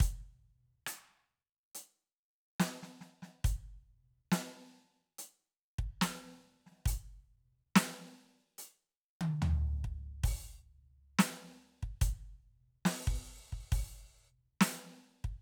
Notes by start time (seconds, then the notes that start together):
0.01 closed hi-hat, kick
0.21 kick
0.87 closed hi-hat, cross-stick
1.76 closed hi-hat
2.61 closed hi-hat, snare
2.68 closed hi-hat
2.83 snare
3.02 snare
3.23 snare
3.45 closed hi-hat, kick
4.32 closed hi-hat, snare
5.19 closed hi-hat
5.79 kick
6.02 closed hi-hat, snare
6.67 snare
6.72 snare
6.76 snare
6.80 snare
6.86 closed hi-hat, kick
7.76 closed hi-hat, snare
8.59 open hi-hat
9.22 high tom
9.43 floor tom
9.85 kick
10.24 open hi-hat, kick
11.19 open hi-hat, snare
11.83 kick
12.02 open hi-hat, kick
12.86 open hi-hat, snare
13.08 kick
13.53 kick
13.73 open hi-hat, kick
14.62 open hi-hat, snare
14.68 cross-stick
15.25 kick